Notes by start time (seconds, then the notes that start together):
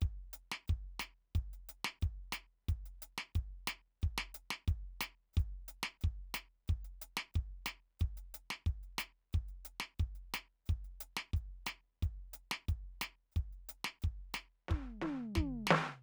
0.01 kick, closed hi-hat
0.33 closed hi-hat
0.52 snare
0.68 kick, closed hi-hat
1.00 closed hi-hat, snare
1.35 kick, closed hi-hat
1.53 closed hi-hat
1.69 closed hi-hat
1.85 snare
2.02 kick, closed hi-hat
2.32 closed hi-hat, snare
2.69 kick, closed hi-hat
2.86 closed hi-hat
3.02 closed hi-hat
3.18 snare
3.35 kick, closed hi-hat
3.67 closed hi-hat, snare
4.02 kick, closed hi-hat
4.18 snare
4.34 closed hi-hat
4.51 snare
4.68 kick, closed hi-hat
5.01 open hi-hat, snare
5.33 kick, hi-hat pedal
5.39 closed hi-hat
5.68 closed hi-hat
5.83 snare
6.01 kick, closed hi-hat
6.34 closed hi-hat, snare
6.68 kick, closed hi-hat
6.84 closed hi-hat
7.02 closed hi-hat
7.17 snare
7.34 kick, closed hi-hat
7.66 closed hi-hat, snare
8.00 kick, closed hi-hat
8.17 closed hi-hat
8.34 closed hi-hat
8.50 snare
8.66 kick, closed hi-hat
8.83 closed hi-hat
8.98 closed hi-hat, snare
9.33 kick, closed hi-hat
9.48 closed hi-hat
9.65 closed hi-hat
9.80 snare
9.99 kick, closed hi-hat
10.15 closed hi-hat
10.34 open hi-hat, snare
10.66 kick, closed hi-hat, hi-hat pedal
10.84 closed hi-hat
11.01 closed hi-hat
11.17 snare
11.33 kick, closed hi-hat
11.66 closed hi-hat, snare
12.03 kick, closed hi-hat
12.33 closed hi-hat
12.51 snare
12.68 kick, closed hi-hat
13.01 closed hi-hat, snare
13.32 hi-hat pedal
13.36 kick, closed hi-hat
13.52 closed hi-hat
13.69 closed hi-hat
13.84 snare
14.02 kick, closed hi-hat
14.34 snare, open hi-hat
14.68 kick, snare, floor tom
15.02 snare, floor tom
15.35 kick, snare, floor tom
15.67 snare
15.71 snare